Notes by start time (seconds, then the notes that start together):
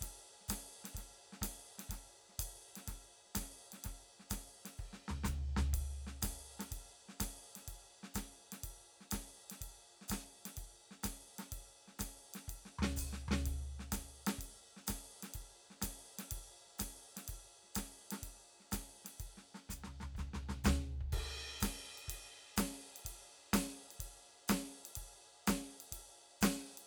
0.01 kick, snare, ride
0.41 snare
0.48 kick, snare, hi-hat pedal, ride
0.84 snare, ride
0.95 kick, snare, ride
1.32 snare
1.42 kick, snare, hi-hat pedal, ride
1.79 snare, ride
1.89 kick, snare, hi-hat pedal, ride
2.29 snare
2.39 kick, hi-hat pedal, ride
2.76 snare, ride
2.87 kick, snare, ride
3.26 snare
3.35 kick, snare, hi-hat pedal, ride
3.40 snare
3.72 snare, ride
3.84 kick, snare, ride
4.20 snare
4.30 kick, snare, hi-hat pedal, ride
4.65 snare, ride
4.77 kick, hi-hat pedal, ride
4.93 snare
5.08 snare, floor tom
5.24 kick, snare, floor tom, hi-hat pedal
5.57 snare, floor tom
5.73 kick, ride
6.07 snare
6.22 kick, snare, hi-hat pedal, ride
6.59 snare, ride
6.71 kick, ride
7.09 snare
7.20 kick, snare, hi-hat pedal, ride
7.55 snare, ride
7.68 kick, ride
8.03 snare
8.14 kick, snare, hi-hat pedal, ride
8.52 snare, ride
8.63 kick, ride
9.01 snare
9.11 kick, snare, hi-hat pedal, ride
9.50 snare, ride
9.61 kick, ride
10.01 snare
10.08 kick, snare, hi-hat pedal, ride
10.45 snare, ride
10.56 kick, hi-hat pedal, ride
10.91 snare
11.03 kick, snare, hi-hat pedal, ride
11.38 snare, ride
11.52 kick, ride
11.88 snare
11.99 kick, snare, hi-hat pedal, ride
12.34 snare, ride
12.48 kick, ride
12.65 snare
12.79 snare, floor tom
12.96 kick, hi-hat pedal, ride
13.13 snare
13.28 snare, floor tom
13.43 kick, hi-hat pedal, ride
13.79 snare
13.92 kick, snare, hi-hat pedal, ride
14.27 snare, ride
14.37 kick, hi-hat pedal, ride
14.77 snare
14.87 kick, snare, hi-hat pedal, ride
15.23 snare, ride
15.32 kick, hi-hat pedal, ride
15.70 snare
15.82 kick, snare, hi-hat pedal, ride
16.19 snare, ride
16.31 kick, ride
16.66 snare
16.79 kick, snare, hi-hat pedal, ride
17.17 snare, ride
17.28 kick, ride
17.64 snare
17.75 kick, snare, hi-hat pedal, ride
18.11 snare, ride
18.23 kick, hi-hat pedal, ride
18.60 snare
18.71 kick, snare, hi-hat pedal, ride
19.05 snare, ride
19.18 kick, hi-hat pedal, ride
19.37 snare
19.54 snare
19.69 kick, snare, floor tom, hi-hat pedal
19.84 snare, floor tom
20.00 snare, floor tom
20.15 kick, snare, floor tom, hi-hat pedal
20.33 snare, floor tom
20.49 snare, floor tom
20.64 kick, snare, floor tom, hi-hat pedal
21.01 kick
21.12 kick, ride
21.60 kick, snare, hi-hat pedal, ride
21.98 ride
22.08 kick, ride
22.57 kick, snare, hi-hat pedal, ride
22.96 ride
23.05 kick, ride
23.53 kick, snare, hi-hat pedal, ride
23.91 ride
24.00 kick, ride
24.48 kick, snare, hi-hat pedal, ride
24.85 ride
24.96 kick, ride
25.47 kick, snare, hi-hat pedal, ride
25.80 ride
25.92 kick, ride
26.41 kick, snare, hi-hat pedal, ride
26.77 ride